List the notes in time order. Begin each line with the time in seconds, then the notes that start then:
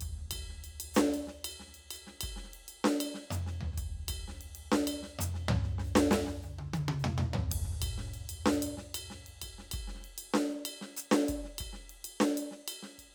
0.01 kick, ride bell
0.17 snare
0.31 kick, ride bell
0.50 snare
0.53 snare
0.64 ride bell
0.80 ride bell
0.94 snare, hi-hat pedal
1.14 ride bell
1.27 snare
1.45 ride bell
1.49 hi-hat pedal
1.60 snare
1.67 snare
1.72 snare, ride bell
1.77 snare
1.80 snare
1.84 snare
1.91 hi-hat pedal, ride bell
2.07 snare
2.21 kick, ride bell
2.29 kick
2.36 snare
2.44 snare
2.54 ride
2.68 ride bell
2.84 snare
3.01 ride bell
3.15 snare
3.31 hi-hat pedal, mid tom
3.47 snare
3.61 floor tom
3.72 snare
3.78 kick, ride bell
3.86 kick
3.99 snare
4.08 kick, ride bell
4.28 snare
4.34 snare
4.41 ride
4.55 ride
4.72 snare
4.87 ride bell
5.03 snare
5.19 hi-hat pedal, mid tom
5.34 snare
5.49 floor tom
5.63 snare
5.79 snare
5.84 hi-hat pedal
5.96 snare
6.11 snare
6.27 snare
6.43 hi-hat pedal, high tom
6.59 high tom
6.74 hi-hat pedal, high tom
6.88 high tom
7.00 hi-hat pedal
7.04 mid tom
7.18 mid tom
7.34 floor tom
7.50 kick, hi-hat pedal, ride
7.57 kick
7.63 snare
7.71 snare
7.82 kick, ride bell
7.90 kick
7.98 snare
8.06 snare
8.14 ride bell
8.29 ride bell
8.46 snare
8.53 hi-hat pedal
8.62 ride bell
8.78 snare
8.95 hi-hat pedal, ride bell
9.10 snare
9.24 kick, ride
9.42 kick, ride bell
9.58 snare
9.72 kick, ride bell
9.80 kick
9.88 snare
9.95 snare
10.01 snare, ride
10.06 snare
10.18 ride bell
10.34 snare
10.49 snare
10.53 snare
10.65 ride bell
10.82 snare
10.97 hi-hat pedal, ride bell
11.12 snare
11.29 kick, ride bell
11.35 kick
11.44 snare
11.58 kick, ride bell
11.73 snare
11.80 snare
11.90 ride
12.05 ride bell
12.20 snare
12.38 ride bell
12.51 snare
12.68 hi-hat pedal, ride bell
12.83 snare
12.98 kick, ride bell